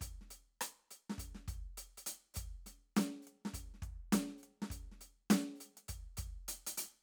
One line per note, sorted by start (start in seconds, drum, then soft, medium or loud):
0.01 closed hi-hat medium
0.01 kick soft
0.21 snare soft
0.26 snare soft
0.29 closed hi-hat medium
0.29 snare soft
0.61 closed hi-hat loud
0.61 cross-stick medium
0.91 closed hi-hat medium
1.10 snare soft
1.18 closed hi-hat medium
1.18 kick soft
1.35 snare soft
1.48 closed hi-hat soft
1.48 kick soft
1.54 kick soft
1.56 kick soft
1.77 closed hi-hat medium
1.98 closed hi-hat medium
2.06 closed hi-hat loud
2.34 closed hi-hat medium
2.34 kick soft
2.34 hi-hat pedal medium
2.66 closed hi-hat soft
2.66 snare soft
2.96 closed hi-hat medium
2.96 snare medium
3.00 closed hi-hat medium
3.22 hi-hat pedal soft
3.27 closed hi-hat soft
3.45 snare soft
3.54 closed hi-hat medium
3.54 kick soft
3.74 snare soft
3.82 kick soft
3.82 closed hi-hat soft
4.12 closed hi-hat loud
4.12 snare medium
4.29 snare soft
4.38 hi-hat pedal soft
4.43 closed hi-hat soft
4.62 snare soft
4.70 closed hi-hat medium
4.70 kick soft
4.92 snare soft
4.98 closed hi-hat medium
4.98 snare soft
5.30 closed hi-hat loud
5.30 snare loud
5.53 snare soft
5.53 hi-hat pedal soft
5.61 closed hi-hat medium
5.77 open hi-hat medium
5.88 closed hi-hat medium
5.88 kick soft
6.17 closed hi-hat medium
6.17 kick soft
6.27 kick soft
6.48 closed hi-hat loud
6.67 closed hi-hat loud
6.78 closed hi-hat loud